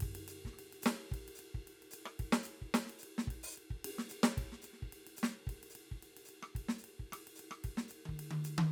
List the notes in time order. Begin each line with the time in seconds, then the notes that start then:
0.01 kick, ride
0.09 kick
0.16 ride
0.28 hi-hat pedal, ride
0.45 kick, snare
0.54 cross-stick
0.59 ride
0.65 snare
0.73 ride
0.83 snare, hi-hat pedal, ride
1.09 kick, snare
1.14 snare, ride
1.19 kick, snare
1.28 ride
1.36 hi-hat pedal
1.40 ride
1.55 kick
1.68 ride
1.83 ride
1.91 hi-hat pedal, ride
2.06 cross-stick
2.20 kick, ride
2.28 kick
2.33 snare
2.44 hi-hat pedal, ride
2.62 kick
2.75 snare, ride
2.87 snare, ride
2.99 hi-hat pedal
3.04 ride
3.19 snare
3.28 kick, ride
3.44 open hi-hat
3.53 hi-hat pedal
3.58 ride
3.71 kick
3.85 ride
3.99 snare
4.10 hi-hat pedal, ride
4.24 snare
4.38 kick, ride
4.44 kick
4.52 snare
4.62 snare, hi-hat pedal, ride
4.74 snare
4.79 kick, snare
4.83 snare
4.89 snare, ride
5.07 ride
5.17 hi-hat pedal, ride
5.24 snare
5.47 kick, ride
5.52 snare
5.56 snare
5.59 snare
5.61 snare, ride
5.70 hi-hat pedal
5.76 ride
5.92 kick
6.03 ride
6.17 ride
6.26 hi-hat pedal, ride
6.43 cross-stick
6.56 kick, ride
6.63 kick
6.69 snare
6.79 hi-hat pedal
6.85 ride
7.00 kick
7.13 cross-stick, ride
7.28 ride
7.36 hi-hat pedal, ride
7.51 cross-stick
7.65 kick, ride
7.78 snare
7.89 hi-hat pedal, ride
8.06 kick, high tom
8.20 ride
8.31 high tom
8.45 hi-hat pedal, ride
8.59 high tom